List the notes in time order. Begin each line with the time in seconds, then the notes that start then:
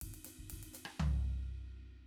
0.01 kick, ride
0.14 ride
0.25 hi-hat pedal, ride
0.39 kick
0.50 kick, ride
0.63 ride
0.73 hi-hat pedal, ride
0.85 cross-stick
0.99 floor tom